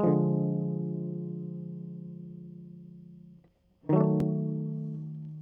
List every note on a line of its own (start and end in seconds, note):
0.00 3.39 G#3
0.04 3.49 D3
0.04 3.42 F3
3.90 5.42 D#3
3.90 5.39 F#3
3.97 5.33 A3
4.01 4.07 D4